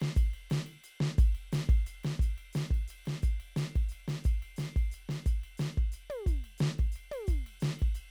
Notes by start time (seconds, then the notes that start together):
0.01 snare, ride
0.16 kick, hi-hat pedal, ride
0.34 ride
0.51 snare, hi-hat pedal, ride
0.67 ride
0.84 hi-hat pedal, ride
1.01 snare
1.18 kick, hi-hat pedal, ride
1.35 ride
1.53 snare, hi-hat pedal, ride
1.69 kick, ride
1.87 hi-hat pedal, ride
2.04 snare, ride
2.20 kick, hi-hat pedal, ride
2.38 ride
2.53 snare, hi-hat pedal, ride
2.71 kick, ride
2.88 hi-hat pedal, ride
3.06 snare, ride
3.23 kick, hi-hat pedal, ride
3.40 ride
3.57 snare, hi-hat pedal, ride
3.76 kick, ride
3.89 hi-hat pedal, ride
4.08 snare, ride
4.24 kick, hi-hat pedal, ride
4.43 ride
4.57 snare, hi-hat pedal, ride
4.76 kick, ride
4.92 hi-hat pedal, ride
5.10 snare, ride
5.26 kick, hi-hat pedal, ride
5.44 ride
5.58 snare, hi-hat pedal, ride
5.78 kick
5.92 hi-hat pedal, ride
6.10 high tom, ride
6.27 kick, hi-hat pedal, ride
6.44 ride
6.58 snare, hi-hat pedal
6.79 kick, ride
6.92 hi-hat pedal, ride
7.12 high tom, ride
7.27 kick, hi-hat pedal, ride
7.47 ride
7.61 snare, hi-hat pedal, ride
7.79 kick, ride
7.95 hi-hat pedal, ride